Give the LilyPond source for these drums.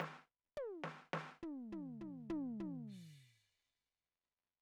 \new DrumStaff \drummode { \time 4/4 \tempo 4 = 104 <sn hhp>4 tommh8 sn8 sn8 tomfh8 tomfh8 tomfh8 | tomfh8 tomfh8 cymc4 r4 r4 | }